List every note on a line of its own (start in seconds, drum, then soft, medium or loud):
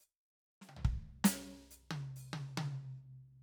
0.02 hi-hat pedal soft
0.61 snare soft
0.69 high tom soft
0.76 floor tom medium
0.85 kick medium
1.24 open hi-hat loud
1.24 snare loud
1.33 open hi-hat soft
1.71 hi-hat pedal medium
1.91 high tom loud
2.16 hi-hat pedal soft
2.33 high tom loud
2.57 high tom loud